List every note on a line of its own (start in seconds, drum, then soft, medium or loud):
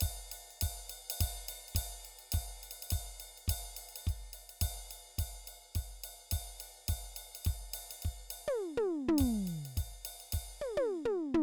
0.01 kick medium
0.01 ride loud
0.32 ride medium
0.51 ride soft
0.61 kick soft
0.61 ride loud
0.90 ride medium
1.10 ride loud
1.21 kick medium
1.21 ride loud
1.49 ride medium
1.68 ride soft
1.75 kick medium
1.75 ride loud
2.05 ride medium
2.19 ride soft
2.32 kick medium
2.32 ride loud
2.63 ride medium
2.71 ride medium
2.83 ride medium
2.91 kick medium
2.91 ride loud
3.20 ride medium
3.38 ride soft
3.48 kick medium
3.48 ride loud
3.77 ride medium
3.89 ride soft
3.96 ride medium
4.07 kick medium
4.07 ride medium
4.33 ride medium
4.50 ride medium
4.62 kick medium
4.62 ride loud
4.91 ride medium
5.19 kick medium
5.19 ride loud
5.48 ride medium
5.75 kick medium
5.75 ride medium
6.04 ride medium
6.32 kick soft
6.32 ride loud
6.60 ride medium
6.88 kick medium
6.88 ride loud
7.17 ride medium
7.35 ride medium
7.47 kick medium
7.74 ride loud
7.91 ride medium
8.02 kick soft
8.02 ride medium
8.31 ride medium
8.48 high tom loud
8.77 mid tom loud
9.08 floor tom loud
9.18 kick medium
9.18 ride loud
9.47 ride medium
9.65 ride medium
9.77 kick soft
9.77 ride medium
10.05 ride medium
10.20 ride soft
10.33 kick soft
10.33 ride loud
10.61 high tom medium
10.77 high tom loud
11.05 mid tom loud
11.34 floor tom loud